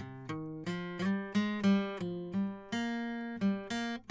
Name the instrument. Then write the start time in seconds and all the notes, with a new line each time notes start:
acoustic guitar
0.00 C3
0.30 D#3
0.68 F3
1.01 G3
1.36 G#3
1.65 G3
1.99 F3
2.35 G3
2.74 A#3
3.43 G3
3.72 A#3